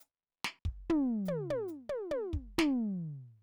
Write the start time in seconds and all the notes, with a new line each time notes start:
0.01 hi-hat pedal
0.45 snare
0.66 kick
0.90 floor tom
1.26 hi-hat pedal, high tom
1.51 high tom
1.69 hi-hat pedal
1.90 high tom
2.11 high tom
2.34 kick
2.58 snare, floor tom